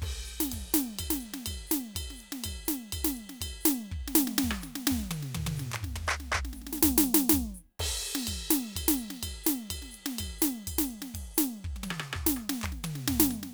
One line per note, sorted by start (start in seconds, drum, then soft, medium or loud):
0.01 kick soft
0.01 floor tom soft
0.01 crash medium
0.25 hi-hat pedal medium
0.40 snare medium
0.52 kick soft
0.52 ride loud
0.59 kick soft
0.73 snare loud
0.73 hi-hat pedal medium
0.99 kick soft
0.99 ride bell loud
1.05 kick soft
1.10 snare medium
1.19 hi-hat pedal medium
1.19 ride soft
1.34 snare medium
1.46 kick soft
1.46 ride bell loud
1.67 hi-hat pedal medium
1.71 snare medium
1.95 kick soft
1.95 ride bell loud
2.01 kick soft
2.10 snare soft
2.16 hi-hat pedal medium
2.20 ride soft
2.32 snare medium
2.44 kick soft
2.44 ride bell loud
2.51 kick soft
2.65 snare medium
2.65 hi-hat pedal medium
2.92 kick soft
2.92 ride bell loud
3.04 snare medium
3.13 hi-hat pedal medium
3.17 ride soft
3.29 snare soft
3.41 kick soft
3.41 ride bell loud
3.46 kick soft
3.61 hi-hat pedal medium
3.65 snare loud
3.91 kick soft
3.98 kick soft
4.08 snare medium
4.14 snare loud
4.14 hi-hat pedal medium
4.27 snare medium
4.38 snare loud
4.44 kick soft
4.50 kick soft
4.50 cross-stick loud
4.61 snare soft
4.61 hi-hat pedal medium
4.75 snare medium
4.87 snare loud
4.91 kick soft
4.98 kick soft
4.98 snare soft
5.10 hi-hat pedal medium
5.10 mid tom loud
5.22 snare soft
5.35 kick soft
5.35 mid tom loud
5.43 kick soft
5.43 mid tom loud
5.57 snare soft
5.57 hi-hat pedal medium
5.71 percussion loud
5.83 kick soft
5.83 snare soft
5.89 kick soft
5.96 floor tom medium
6.07 percussion loud
6.07 hi-hat pedal medium
6.20 snare soft
6.32 kick soft
6.32 percussion loud
6.45 snare soft
6.53 snare soft
6.53 hi-hat pedal medium
6.61 snare soft
6.67 snare medium
6.73 snare medium
6.78 snare soft
6.82 kick soft
6.82 snare loud
6.90 kick soft
6.98 snare loud
7.04 hi-hat pedal medium
7.14 snare loud
7.29 kick soft
7.29 snare loud
7.39 kick soft
7.54 hi-hat pedal medium
7.79 kick soft
7.79 crash loud
7.86 kick soft
7.91 kick soft
8.03 hi-hat pedal medium
8.15 snare medium
8.27 kick soft
8.27 ride bell loud
8.34 kick soft
8.50 snare loud
8.50 hi-hat pedal medium
8.76 kick soft
8.76 ride bell loud
8.82 kick soft
8.88 snare loud
8.97 hi-hat pedal medium
8.97 ride soft
9.10 snare medium
9.23 kick soft
9.23 ride bell loud
9.44 snare loud
9.44 hi-hat pedal medium
9.70 kick soft
9.70 ride bell loud
9.82 snare soft
9.91 hi-hat pedal medium
9.91 ride soft
10.06 snare medium
10.18 kick soft
10.18 ride bell loud
10.26 kick soft
10.38 snare loud
10.38 hi-hat pedal medium
10.67 kick soft
10.67 ride bell loud
10.78 snare medium
10.85 hi-hat pedal medium
10.91 ride soft
11.02 snare medium
11.14 kick soft
11.14 ride loud
11.34 snare loud
11.34 hi-hat pedal medium
11.64 kick soft
11.71 kick soft
11.76 high tom soft
11.83 hi-hat pedal medium
11.83 high tom loud
11.90 cross-stick loud
12.00 cross-stick medium
12.13 kick soft
12.13 cross-stick loud
12.21 kick soft
12.26 snare loud
12.33 cross-stick soft
12.33 hi-hat pedal medium
12.49 snare medium
12.61 kick soft
12.61 percussion loud
12.70 kick soft
12.70 snare soft
12.83 hi-hat pedal medium
12.83 mid tom loud
12.95 snare soft
13.08 kick soft
13.08 snare loud
13.15 kick soft
13.20 snare loud
13.31 snare soft
13.31 hi-hat pedal medium
13.43 snare medium